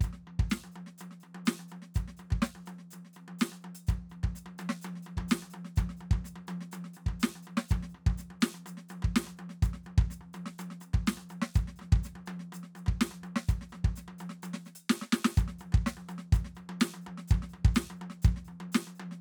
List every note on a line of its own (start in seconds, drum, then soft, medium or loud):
0.01 kick medium
0.01 hi-hat pedal medium
0.01 high tom medium
0.13 snare soft
0.27 high tom soft
0.40 kick loud
0.40 high tom medium
0.50 snare medium
0.50 hi-hat pedal medium
0.64 high tom medium
0.72 hi-hat pedal soft
0.76 high tom medium
0.87 snare soft
0.98 hi-hat pedal medium
0.98 high tom medium
1.11 snare soft
1.20 hi-hat pedal soft
1.20 high tom soft
1.35 high tom medium
1.46 snare loud
1.46 hi-hat pedal medium
1.59 high tom soft
1.68 hi-hat pedal soft
1.68 high tom medium
1.82 snare soft
1.95 kick medium
1.95 hi-hat pedal medium
1.95 high tom medium
2.08 snare soft
2.17 hi-hat pedal soft
2.17 high tom medium
2.31 kick medium
2.31 high tom medium
2.42 snare loud
2.42 hi-hat pedal medium
2.55 high tom medium
2.66 hi-hat pedal medium
2.66 high tom medium
2.79 snare soft
2.91 hi-hat pedal medium
2.91 high tom medium
3.05 snare soft
3.13 hi-hat pedal soft
3.13 high tom soft
3.28 high tom medium
3.39 snare loud
3.39 hi-hat pedal medium
3.52 high tom medium
3.61 hi-hat pedal soft
3.61 high tom medium
3.75 closed hi-hat medium
3.87 kick medium
3.87 hi-hat pedal medium
3.87 high tom medium
4.10 hi-hat pedal soft
4.10 high tom soft
4.24 kick medium
4.24 high tom medium
4.35 snare soft
4.35 hi-hat pedal medium
4.46 high tom medium
4.58 hi-hat pedal medium
4.58 high tom medium
4.70 snare medium
4.82 hi-hat pedal medium
4.82 high tom medium
4.96 snare soft
5.03 hi-hat pedal medium
5.07 high tom medium
5.17 kick medium
5.17 high tom medium
5.29 snare loud
5.29 hi-hat pedal medium
5.43 high tom medium
5.50 hi-hat pedal medium
5.50 high tom medium
5.65 snare soft
5.76 kick loud
5.76 hi-hat pedal medium
5.76 high tom medium
5.90 snare soft
5.97 hi-hat pedal soft
6.01 high tom medium
6.11 kick loud
6.11 high tom medium
6.25 snare soft
6.25 hi-hat pedal medium
6.36 high tom medium
6.47 hi-hat pedal soft
6.47 high tom loud
6.61 snare soft
6.72 hi-hat pedal medium
6.72 high tom medium
6.84 snare soft
6.94 hi-hat pedal medium
6.94 high tom soft
7.07 kick medium
7.07 high tom medium
7.20 snare loud
7.20 hi-hat pedal medium
7.36 high tom soft
7.43 hi-hat pedal medium
7.47 high tom medium
7.57 snare loud
7.69 kick loud
7.69 hi-hat pedal medium
7.69 high tom medium
7.83 snare soft
7.89 hi-hat pedal soft
7.95 high tom soft
8.07 kick loud
8.07 high tom medium
8.18 snare soft
8.18 hi-hat pedal medium
8.31 high tom medium
8.41 snare loud
8.41 hi-hat pedal soft
8.55 high tom soft
8.66 hi-hat pedal medium
8.66 high tom medium
8.78 snare soft
8.89 hi-hat pedal medium
8.89 high tom medium
9.03 kick medium
9.03 high tom medium
9.16 snare loud
9.16 hi-hat pedal medium
9.24 snare soft
9.24 high tom medium
9.32 kick soft
9.37 hi-hat pedal soft
9.37 high tom medium
9.50 snare soft
9.63 kick loud
9.63 hi-hat pedal medium
9.63 high tom medium
9.73 snare soft
9.84 hi-hat pedal soft
9.84 high tom medium
9.98 kick loud
9.98 high tom medium
10.11 snare soft
10.11 hi-hat pedal medium
10.21 high tom soft
10.34 hi-hat pedal soft
10.34 high tom medium
10.46 snare medium
10.59 hi-hat pedal medium
10.59 high tom medium
10.71 snare soft
10.81 hi-hat pedal medium
10.81 high tom soft
10.94 kick loud
10.94 high tom medium
11.07 snare loud
11.07 hi-hat pedal medium
11.18 high tom medium
11.29 hi-hat pedal medium
11.29 high tom medium
11.42 snare medium
11.54 kick loud
11.54 hi-hat pedal medium
11.54 high tom medium
11.68 snare soft
11.76 hi-hat pedal soft
11.76 high tom medium
11.82 snare soft
11.92 kick loud
11.92 high tom medium
12.04 snare soft
12.04 hi-hat pedal medium
12.16 high tom medium
12.26 hi-hat pedal soft
12.26 high tom medium
12.40 snare soft
12.53 hi-hat pedal medium
12.53 high tom medium
12.63 snare soft
12.75 hi-hat pedal soft
12.75 high tom medium
12.87 kick medium
12.87 high tom medium
13.01 snare loud
13.01 hi-hat pedal medium
13.11 high tom medium
13.22 kick soft
13.22 hi-hat pedal soft
13.22 high tom medium
13.36 snare medium
13.48 kick loud
13.48 hi-hat pedal medium
13.48 high tom medium
13.62 snare soft
13.69 hi-hat pedal soft
13.69 high tom medium
13.73 snare soft
13.85 kick loud
13.85 high tom medium
13.96 snare soft
13.96 hi-hat pedal medium
14.08 high tom medium
14.19 hi-hat pedal medium
14.19 high tom medium
14.30 snare soft
14.43 hi-hat pedal medium
14.43 high tom medium
14.54 snare medium
14.65 snare soft
14.65 hi-hat pedal soft
14.75 closed hi-hat medium
14.90 snare loud
14.90 hi-hat pedal medium
15.02 snare medium
15.13 snare loud
15.13 hi-hat pedal medium
15.25 snare loud
15.37 kick loud
15.37 hi-hat pedal medium
15.37 high tom medium
15.48 snare soft
15.59 hi-hat pedal medium
15.59 high tom medium
15.73 kick loud
15.73 high tom medium
15.87 snare medium
15.87 hi-hat pedal loud
15.97 high tom medium
16.09 hi-hat pedal medium
16.09 high tom medium
16.18 snare soft
16.33 kick loud
16.33 hi-hat pedal medium
16.33 high tom medium
16.45 snare soft
16.55 hi-hat pedal soft
16.55 high tom medium
16.69 high tom medium
16.80 snare loud
16.80 hi-hat pedal medium
16.94 high tom medium
17.02 hi-hat pedal soft
17.07 kick soft
17.07 high tom medium
17.18 snare soft
17.28 kick loud
17.28 hi-hat pedal medium
17.32 high tom medium
17.43 snare soft
17.49 hi-hat pedal soft
17.54 high tom medium
17.65 kick loud
17.65 high tom medium
17.75 snare loud
17.75 hi-hat pedal medium
17.90 high tom medium
17.96 hi-hat pedal soft
18.02 high tom medium
18.10 snare soft
18.22 kick loud
18.22 hi-hat pedal medium
18.22 high tom medium
18.37 snare soft
18.45 hi-hat pedal soft
18.45 high tom soft
18.61 high tom medium
18.72 snare loud
18.72 hi-hat pedal medium
18.87 high tom medium
18.95 hi-hat pedal soft
19.00 high tom medium
19.12 snare soft